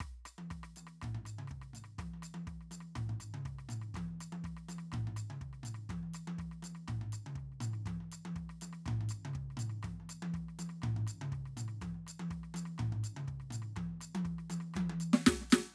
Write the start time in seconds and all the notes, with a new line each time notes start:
0.01 kick, cross-stick
0.25 cross-stick, percussion
0.38 high tom
0.50 kick, cross-stick
0.63 cross-stick
0.76 high tom, percussion
0.87 cross-stick
1.02 kick, cross-stick, floor tom
1.15 floor tom
1.25 cross-stick, percussion
1.38 mid tom
1.47 kick, cross-stick
1.61 cross-stick
1.73 floor tom, percussion
1.84 cross-stick
1.98 kick, cross-stick, high tom
2.14 high tom
2.17 high tom
2.22 cross-stick, percussion
2.34 high tom
2.47 kick, cross-stick
2.61 cross-stick
2.71 high tom, percussion
2.80 cross-stick
2.95 kick, cross-stick, floor tom
3.09 floor tom
3.20 cross-stick, percussion
3.34 mid tom
3.45 kick, cross-stick
3.59 cross-stick
3.69 floor tom, percussion
3.82 cross-stick
3.94 kick, cross-stick, high tom
4.08 high tom
4.11 high tom
4.16 high tom
4.20 cross-stick, percussion
4.32 high tom
4.44 kick, cross-stick
4.57 cross-stick
4.68 high tom, percussion
4.78 cross-stick
4.92 kick, cross-stick, floor tom
5.07 floor tom
5.16 cross-stick, percussion
5.30 mid tom
5.41 kick, cross-stick
5.53 cross-stick
5.63 floor tom, percussion
5.74 cross-stick
5.89 kick, cross-stick, high tom
6.03 high tom
6.06 high tom
6.14 cross-stick, percussion
6.27 high tom
6.38 kick, cross-stick
6.51 cross-stick
6.62 high tom, percussion
6.75 cross-stick
6.88 kick, cross-stick, floor tom
7.01 floor tom
7.12 cross-stick, percussion
7.26 mid tom
7.35 kick, cross-stick
7.52 cross-stick
7.60 floor tom, percussion
7.73 cross-stick
7.86 kick, cross-stick, high tom
8.00 high tom
8.04 high tom
8.12 cross-stick, percussion
8.25 high tom
8.36 kick, cross-stick
8.49 cross-stick
8.61 high tom, percussion
8.73 cross-stick
8.86 kick, cross-stick, floor tom
9.01 floor tom
9.09 cross-stick, percussion
9.25 mid tom
9.33 kick, cross-stick
9.50 cross-stick
9.57 floor tom, percussion
9.70 cross-stick
9.82 kick, cross-stick, high tom, percussion
9.90 high tom
10.00 high tom
10.05 cross-stick, high tom
10.09 percussion
10.22 high tom
10.34 kick, cross-stick
10.48 cross-stick
10.59 high tom, percussion
10.69 cross-stick
10.82 kick, cross-stick, floor tom
10.96 floor tom
11.07 cross-stick, percussion
11.21 mid tom
11.32 kick, cross-stick
11.45 cross-stick
11.57 floor tom, percussion
11.68 cross-stick
11.81 kick, cross-stick, high tom, percussion
11.94 high tom
12.07 cross-stick, percussion
12.19 high tom
12.30 kick, cross-stick
12.43 cross-stick
12.54 high tom, percussion
12.65 cross-stick
12.78 kick, cross-stick, floor tom
12.92 floor tom
13.03 cross-stick, percussion
13.16 mid tom
13.28 kick, cross-stick
13.40 cross-stick
13.50 floor tom, percussion
13.62 cross-stick
13.76 kick, cross-stick, high tom
13.89 high tom
13.93 high tom
14.01 cross-stick, percussion
14.15 high tom
14.25 kick, cross-stick
14.38 cross-stick
14.50 high tom, percussion
14.60 cross-stick
14.74 kick, cross-stick, high tom
14.90 high tom
15.00 cross-stick, percussion
15.13 snare
15.26 kick, snare
15.41 snare
15.50 snare, percussion